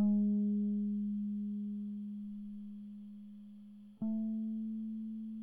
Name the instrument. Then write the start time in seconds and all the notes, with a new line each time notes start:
electric guitar
0.00 G#3
4.03 A3